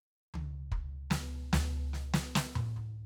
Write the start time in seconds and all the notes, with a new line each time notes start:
0.34 floor tom, high tom
0.72 kick, floor tom
1.10 snare, floor tom
1.53 snare, floor tom
1.93 snare
2.14 snare
2.35 snare
2.56 mid tom
2.76 floor tom